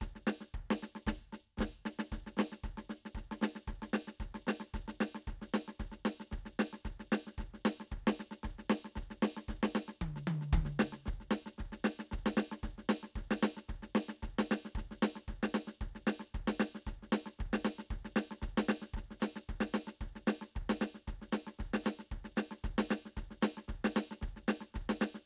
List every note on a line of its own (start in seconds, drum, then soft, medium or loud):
0.01 kick soft
0.01 snare soft
0.15 snare soft
0.27 snare medium
0.41 snare soft
0.54 kick soft
0.54 snare soft
0.70 snare medium
0.83 snare soft
0.95 snare soft
1.07 kick soft
1.07 snare medium
1.33 snare soft
1.57 kick soft
1.57 snare soft
1.60 snare medium
1.85 snare medium
1.99 snare medium
2.12 kick soft
2.12 snare soft
2.26 snare soft
2.37 snare soft
2.39 snare medium
2.52 snare soft
2.63 kick soft
2.63 snare soft
2.77 snare soft
2.89 snare soft
3.05 snare soft
3.15 kick soft
3.15 snare soft
3.31 snare soft
3.43 snare medium
3.55 snare soft
3.67 kick soft
3.67 snare soft
3.82 snare soft
3.93 snare medium
4.07 snare soft
4.20 kick soft
4.20 snare soft
4.34 snare soft
4.47 snare soft
4.47 snare medium
4.60 snare soft
4.74 kick soft
4.74 snare soft
4.88 snare soft
5.00 snare medium
5.15 snare soft
5.27 kick soft
5.27 snare soft
5.42 snare soft
5.54 snare medium
5.68 snare soft
5.79 kick soft
5.79 snare soft
5.92 snare soft
6.05 snare medium
6.20 snare soft
6.31 kick soft
6.31 snare soft
6.45 snare soft
6.59 snare medium
6.73 snare soft
6.85 kick soft
6.85 snare soft
7.00 snare soft
7.12 snare medium
7.27 snare soft
7.38 kick soft
7.38 snare soft
7.54 snare soft
7.65 snare loud
7.80 snare soft
7.91 kick soft
7.91 snare soft
8.07 snare loud
8.19 snare soft
8.31 snare soft
8.43 kick soft
8.43 snare soft
8.58 snare soft
8.70 snare loud
8.85 snare soft
8.96 kick soft
8.96 snare soft
9.10 snare soft
9.22 snare loud
9.37 snare soft
9.48 kick soft
9.48 snare soft
9.63 snare medium
9.75 snare medium
9.88 snare soft
10.01 kick soft
10.01 high tom medium
10.16 snare soft
10.27 high tom loud
10.41 snare soft
10.53 kick loud
10.53 high tom loud
10.65 snare soft
10.79 snare loud
10.92 snare soft
11.06 kick medium
11.06 snare soft
11.20 snare soft
11.31 snare medium
11.46 snare soft
11.58 kick soft
11.58 snare soft
11.72 snare soft
11.84 snare medium
11.99 snare soft
12.11 kick soft
12.11 snare soft
12.26 snare medium
12.37 snare loud
12.52 snare soft
12.63 kick soft
12.63 snare soft
12.78 snare soft
12.89 snare loud
13.03 snare soft
13.15 kick soft
13.15 snare soft
13.31 snare medium
13.43 snare loud
13.57 snare soft
13.69 kick soft
13.69 snare soft
13.82 snare soft
13.95 snare loud
14.08 snare soft
14.22 kick soft
14.22 snare soft
14.38 snare medium
14.51 snare medium
14.65 snare soft
14.75 kick medium
14.75 snare soft
14.91 snare soft
15.02 snare loud
15.16 snare soft
15.28 kick soft
15.28 snare soft
15.43 snare medium
15.54 snare medium
15.67 snare soft
15.81 kick soft
15.81 snare soft
15.95 snare soft
16.07 snare medium
16.20 snare soft
16.34 kick soft
16.34 snare soft
16.47 snare medium
16.60 snare medium
16.75 snare soft
16.87 kick soft
16.87 snare soft
17.02 snare soft
17.12 snare medium
17.26 snare soft
17.39 kick medium
17.39 snare soft
17.53 snare medium
17.65 snare medium
17.78 snare soft
17.90 kick medium
17.90 snare soft
18.05 snare soft
18.16 snare medium
18.31 snare soft
18.42 kick soft
18.42 snare soft
18.57 snare medium
18.69 snare medium
18.82 snare soft
18.94 kick soft
18.94 snare soft
19.11 snare soft
19.20 snare medium
19.20 hi-hat pedal medium
19.36 snare soft
19.49 kick soft
19.49 snare soft
19.60 snare medium
19.73 snare medium
19.73 hi-hat pedal medium
19.87 snare soft
20.01 kick soft
20.01 snare soft
20.15 snare soft
20.27 snare loud
20.27 hi-hat pedal medium
20.41 snare soft
20.55 kick medium
20.55 snare soft
20.69 snare medium
20.80 snare medium
20.80 hi-hat pedal medium
20.94 snare soft
21.07 kick soft
21.07 snare soft
21.21 snare soft
21.32 snare medium
21.32 hi-hat pedal medium
21.47 snare soft
21.59 kick soft
21.59 snare soft
21.74 snare medium
21.83 snare medium
21.83 hi-hat pedal medium
21.99 snare soft
22.11 kick soft
22.11 snare soft
22.24 snare soft
22.36 snare medium
22.36 hi-hat pedal medium
22.51 snare soft
22.64 kick medium
22.64 snare soft
22.78 snare medium
22.89 snare medium
22.89 hi-hat pedal medium
23.05 snare soft
23.17 kick soft
23.17 snare soft
23.30 snare soft
23.42 snare loud
23.42 hi-hat pedal medium
23.57 snare soft
23.68 kick soft
23.68 snare soft
23.84 snare medium
23.95 snare medium
23.95 hi-hat pedal medium
24.11 snare soft
24.21 kick medium
24.21 snare soft
24.36 snare soft
24.48 snare medium
24.48 hi-hat pedal medium
24.61 snare soft
24.74 kick soft
24.74 snare soft
24.89 snare medium
25.00 snare medium
25.00 hi-hat pedal medium
25.14 snare soft